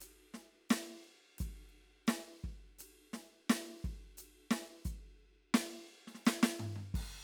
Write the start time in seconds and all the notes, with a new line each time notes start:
0.01 hi-hat pedal, ride
0.34 snare, ride
0.70 snare, hi-hat pedal, ride
1.05 ride
1.39 kick, hi-hat pedal, ride
1.70 ride
2.08 snare, hi-hat pedal, ride
2.44 kick, ride
2.79 hi-hat pedal, ride
3.14 snare, ride
3.50 snare, hi-hat pedal, ride
3.85 kick, ride
4.18 hi-hat pedal, ride
4.51 snare, ride
4.85 kick, hi-hat pedal, ride
5.20 ride
5.55 snare, hi-hat pedal, ride
6.08 snare
6.15 snare
6.23 snare, hi-hat pedal
6.27 snare
6.43 snare
6.60 floor tom
6.76 floor tom
6.95 kick, crash